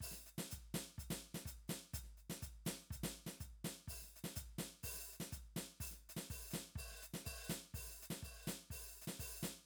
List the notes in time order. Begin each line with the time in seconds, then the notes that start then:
0.01 open hi-hat, kick
0.12 snare
0.26 hi-hat pedal
0.39 snare
0.51 closed hi-hat, kick
0.75 snare
0.98 closed hi-hat, kick
1.03 kick
1.11 snare
1.35 snare
1.46 closed hi-hat, kick
1.51 kick
1.68 snare, hi-hat pedal
1.94 closed hi-hat, kick
2.04 snare
2.17 open hi-hat, hi-hat pedal
2.30 snare
2.42 closed hi-hat, kick
2.66 snare, hi-hat pedal
2.91 closed hi-hat, kick
2.96 kick
3.04 snare
3.19 closed hi-hat
3.27 snare
3.40 closed hi-hat, kick
3.46 kick
3.65 snare
3.88 open hi-hat, kick
3.93 kick
4.03 snare
4.16 hi-hat pedal
4.24 snare
4.36 closed hi-hat, kick
4.42 kick
4.59 snare
4.83 open hi-hat, kick
4.95 snare
5.07 open hi-hat
5.13 hi-hat pedal
5.20 snare
5.32 closed hi-hat, kick
5.38 kick
5.57 snare
5.81 open hi-hat, kick
5.85 kick
5.92 snare
6.06 hi-hat pedal, open hi-hat
6.17 snare
6.30 open hi-hat, kick
6.35 kick
6.51 snare, hi-hat pedal
6.76 open hi-hat, kick
6.92 snare
7.03 open hi-hat, hi-hat pedal
7.14 snare
7.25 open hi-hat, kick
7.32 kick
7.50 snare, hi-hat pedal
7.74 open hi-hat, kick
7.79 kick
7.88 snare
7.99 open hi-hat, hi-hat pedal
8.11 snare
8.23 open hi-hat, kick
8.48 snare, hi-hat pedal
8.71 open hi-hat, kick
8.96 open hi-hat
9.02 hi-hat pedal
9.08 snare
9.19 open hi-hat, kick
9.43 snare, hi-hat pedal